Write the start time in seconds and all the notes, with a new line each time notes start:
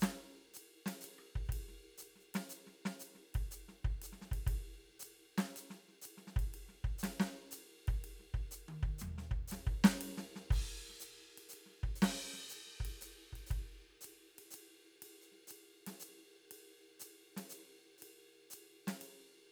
0.01 snare, hi-hat pedal, ride
0.44 snare
0.55 hi-hat pedal, ride
0.87 snare, ride
1.02 hi-hat pedal, ride
1.19 cross-stick
1.36 kick
1.46 kick, hi-hat pedal
1.53 ride
1.69 snare
1.99 hi-hat pedal
2.04 ride
2.17 snare
2.21 hi-hat pedal
2.35 snare, ride
2.50 hi-hat pedal, ride
2.68 snare
2.86 snare
3.01 hi-hat pedal, ride
3.16 snare
3.35 kick, ride
3.52 hi-hat pedal, ride
3.69 snare
3.86 kick
4.03 hi-hat pedal, ride
4.13 snare
4.23 snare
4.32 kick, ride
4.48 kick, ride
4.90 snare
5.01 hi-hat pedal, ride
5.39 snare, ride
5.57 hi-hat pedal, ride
5.71 snare
5.89 snare
6.03 hi-hat pedal, ride
6.18 snare
6.28 snare
6.37 kick, ride
6.55 ride
6.70 snare
6.85 kick
7.00 hi-hat pedal
7.04 snare, ride
7.21 snare
7.52 hi-hat pedal, ride
7.72 snare
7.89 kick, ride
8.05 ride
8.21 snare
8.35 kick
8.52 hi-hat pedal, ride
8.69 high tom
8.84 kick
9.00 floor tom, hi-hat pedal
9.19 snare
9.32 kick
9.49 hi-hat pedal, ride
9.53 snare
9.68 kick
9.85 snare, ride
10.02 ride
10.19 snare
10.37 snare
10.52 kick, crash
10.90 snare
11.01 hi-hat pedal, ride
11.39 ride
11.50 hi-hat pedal
11.54 ride
11.67 snare
11.84 kick
11.97 hi-hat pedal
12.03 snare, crash
12.34 snare
12.50 hi-hat pedal, ride
12.67 snare
12.81 kick
12.86 ride
13.02 hi-hat pedal, ride
13.34 kick, ride
13.47 hi-hat pedal
13.52 kick, ride
13.91 cross-stick
14.02 hi-hat pedal, ride
14.39 ride
14.52 hi-hat pedal, ride
15.03 ride
15.22 hi-hat pedal
15.33 snare
15.48 hi-hat pedal, ride
15.88 snare, ride
16.01 hi-hat pedal, ride
16.52 ride
17.01 hi-hat pedal, ride
17.38 snare, ride
17.51 hi-hat pedal, ride
17.99 hi-hat pedal
18.03 ride
18.51 hi-hat pedal, ride
18.88 snare, ride
19.01 hi-hat pedal, ride